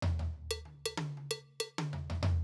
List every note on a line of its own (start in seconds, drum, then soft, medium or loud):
0.00 floor tom loud
0.19 floor tom medium
0.33 high tom soft
0.51 percussion loud
0.65 high tom soft
0.85 percussion loud
0.97 high tom loud
1.17 high tom soft
1.31 percussion loud
1.60 percussion loud
1.78 high tom loud
1.93 floor tom medium
2.10 floor tom medium
2.23 floor tom loud